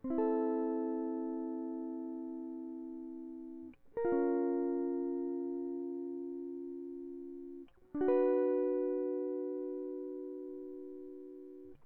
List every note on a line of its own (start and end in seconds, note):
0.05 3.77 C4
0.11 3.73 E4
0.19 3.37 A4
3.98 6.64 A#4
4.06 7.66 F4
4.13 7.69 C#4
7.96 11.74 D4
8.02 11.75 F#4
8.09 11.74 B4